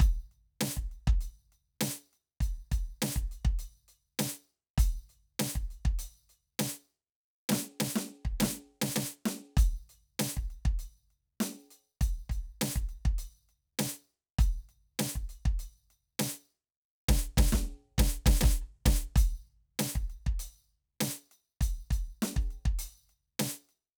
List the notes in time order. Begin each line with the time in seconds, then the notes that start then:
0.00 kick, closed hi-hat
0.31 closed hi-hat
0.61 closed hi-hat, snare
0.77 kick
0.91 closed hi-hat
1.07 kick
1.21 closed hi-hat
1.52 closed hi-hat
1.81 closed hi-hat, snare
2.13 closed hi-hat
2.41 closed hi-hat, kick
2.71 closed hi-hat, kick
3.02 closed hi-hat, snare
3.16 kick
3.31 closed hi-hat
3.45 kick
3.59 closed hi-hat
3.88 closed hi-hat
4.19 closed hi-hat, snare
4.78 closed hi-hat, kick
5.09 closed hi-hat
5.39 closed hi-hat, snare
5.55 kick
5.70 closed hi-hat
5.85 kick, crash
5.99 closed hi-hat
6.29 closed hi-hat
6.59 closed hi-hat, snare
7.49 snare
7.52 snare
7.80 snare
7.96 snare
8.25 kick
8.40 snare
8.42 snare
8.81 snare
8.96 snare
9.26 snare
9.57 closed hi-hat, kick
9.89 closed hi-hat
10.19 closed hi-hat, snare
10.37 kick
10.50 closed hi-hat
10.65 kick
10.79 closed hi-hat
11.10 closed hi-hat
11.40 closed hi-hat, snare
11.71 closed hi-hat
12.01 closed hi-hat, kick
12.29 closed hi-hat, kick
12.61 closed hi-hat, snare
12.76 kick
12.89 closed hi-hat
13.05 kick
13.18 closed hi-hat
13.49 closed hi-hat
13.79 closed hi-hat, snare
14.39 closed hi-hat, kick
14.69 closed hi-hat
14.99 closed hi-hat, snare
15.15 kick
15.29 closed hi-hat
15.45 kick
15.59 closed hi-hat
15.90 closed hi-hat
16.19 closed hi-hat, snare
17.09 kick, snare
17.37 kick, snare
17.52 kick, snare
17.98 kick, snare
18.26 kick, snare
18.41 kick, snare
18.62 cross-stick
18.86 kick, snare
19.16 closed hi-hat, kick
19.79 closed hi-hat, snare
19.95 kick
20.10 closed hi-hat
20.26 kick
20.39 closed hi-hat
20.70 closed hi-hat
21.00 closed hi-hat, snare
21.31 closed hi-hat
21.61 closed hi-hat, kick
21.91 closed hi-hat, kick
22.22 closed hi-hat, snare
22.36 kick
22.50 closed hi-hat
22.65 kick
22.79 closed hi-hat
23.09 closed hi-hat
23.39 closed hi-hat, snare
23.69 closed hi-hat